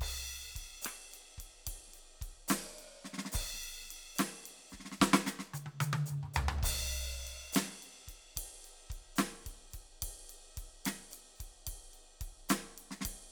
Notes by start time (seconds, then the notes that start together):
0.01 kick, crash
0.56 kick, ride
0.82 hi-hat pedal, ride
0.86 cross-stick
1.11 hi-hat pedal, ride
1.38 kick, snare, ride
1.67 kick, ride
1.88 snare
1.93 snare, hi-hat pedal, ride
1.97 snare
2.22 kick, ride
2.48 snare, hi-hat pedal, ride
2.76 snare, ride
2.83 snare
3.05 snare
3.14 snare
3.18 snare
3.25 snare
3.32 kick, snare, hi-hat pedal, crash
3.41 kick
3.47 kick
3.54 snare
3.64 ride
3.81 snare
3.84 snare
3.91 ride
4.16 snare, hi-hat pedal, ride
4.46 ride
4.59 snare
4.70 snare, hi-hat pedal
4.74 kick
4.80 snare
4.85 snare
4.92 snare
4.97 kick, hi-hat pedal
5.02 snare
5.14 snare
5.27 snare, hi-hat pedal
5.39 snare
5.54 hi-hat pedal, high tom
5.66 high tom
5.81 hi-hat pedal, high tom
5.93 high tom
6.06 hi-hat pedal
6.11 mid tom
6.23 mid tom
6.34 hi-hat pedal, floor tom
6.49 floor tom
6.59 floor tom
6.63 kick, hi-hat pedal, crash
6.75 kick
7.27 ride
7.53 snare, hi-hat pedal, ride
7.83 snare, ride
8.08 kick, ride
8.35 kick, hi-hat pedal, ride
8.65 hi-hat pedal, ride
8.90 kick, ride
9.16 snare, hi-hat pedal, ride
9.28 snare
9.45 kick, snare, ride
9.71 kick, hi-hat pedal, ride
10.03 kick, ride
10.08 kick
10.30 ride
10.57 kick, ride
10.85 snare, hi-hat pedal, ride
11.11 snare, hi-hat pedal, ride
11.36 hi-hat pedal
11.40 kick, ride
11.67 kick, ride
11.73 kick
11.94 ride
12.21 kick, ride
12.49 snare, hi-hat pedal, ride
12.78 ride
12.91 snare
13.01 kick, snare, ride